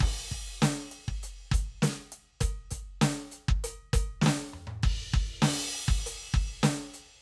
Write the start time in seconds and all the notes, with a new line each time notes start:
0.01 kick, crash
0.31 closed hi-hat, kick
0.62 closed hi-hat, snare
0.92 closed hi-hat
1.08 kick, snare
1.23 closed hi-hat
1.52 closed hi-hat, kick
1.82 closed hi-hat, snare
2.12 closed hi-hat
2.41 closed hi-hat, kick
2.71 closed hi-hat, kick
3.02 closed hi-hat, snare
3.32 closed hi-hat
3.49 kick
3.64 closed hi-hat
3.94 closed hi-hat, kick
4.22 snare
4.26 snare, hi-hat pedal
4.47 hi-hat pedal
4.54 mid tom
4.67 high tom
4.83 kick, ride
5.14 kick
5.42 snare, crash
5.68 closed hi-hat
5.88 kick
6.07 closed hi-hat
6.34 kick
6.63 closed hi-hat, snare
6.94 closed hi-hat